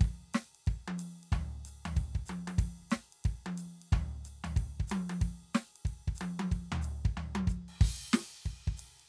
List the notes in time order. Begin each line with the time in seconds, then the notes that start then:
0.01 kick, ride
0.34 snare, hi-hat pedal, ride
0.55 ride
0.67 kick, ride
0.88 high tom
0.99 hi-hat pedal, ride
1.23 ride
1.32 kick, floor tom, ride
1.65 hi-hat pedal, ride
1.86 floor tom, ride
1.97 kick, ride
2.15 kick
2.26 hi-hat pedal, high tom, ride
2.48 high tom, ride
2.59 kick, ride
2.82 kick
2.90 snare, hi-hat pedal, ride
2.96 kick
3.13 ride
3.24 kick, ride
3.46 high tom
3.58 hi-hat pedal, ride
3.65 kick
3.82 ride
3.92 kick, floor tom, ride
4.13 kick
4.25 hi-hat pedal, ride
4.44 floor tom, ride
4.57 kick, ride
4.80 kick
4.88 hi-hat pedal, ride
4.92 high tom
5.10 high tom, ride
5.22 kick, ride
5.54 snare, hi-hat pedal, ride
5.76 ride
5.85 kick, ride
6.08 kick
6.15 hi-hat pedal, ride
6.21 high tom
6.40 high tom
6.52 kick, ride
6.72 floor tom
6.82 hi-hat pedal, ride
7.05 kick
7.17 floor tom
7.35 high tom
7.47 kick, hi-hat pedal
7.69 ride
7.81 kick, crash
8.13 snare, hi-hat pedal, ride
8.35 ride
8.46 kick, ride
8.67 kick
8.77 hi-hat pedal, ride
9.00 ride